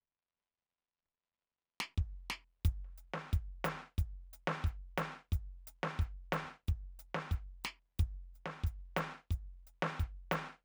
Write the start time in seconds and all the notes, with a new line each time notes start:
1.80 snare
1.97 kick
2.30 snare
2.65 closed hi-hat, kick
2.84 snare
2.97 closed hi-hat
3.13 snare
3.33 kick, closed hi-hat
3.64 snare, closed hi-hat
3.72 kick
3.98 kick, closed hi-hat
4.33 closed hi-hat
4.47 snare
4.64 kick, closed hi-hat
4.97 snare, closed hi-hat
5.32 closed hi-hat, kick
5.67 closed hi-hat
5.83 snare
5.99 kick, closed hi-hat
6.32 snare, closed hi-hat
6.43 kick
6.67 kick, closed hi-hat
6.99 closed hi-hat
7.14 snare
7.31 kick, closed hi-hat
7.64 snare, closed hi-hat
7.99 open hi-hat, kick
8.34 closed hi-hat, hi-hat pedal
8.46 snare
8.63 kick, closed hi-hat
8.96 snare, closed hi-hat
9.31 kick, closed hi-hat
9.67 closed hi-hat
9.82 snare
9.99 closed hi-hat, kick
10.31 snare, closed hi-hat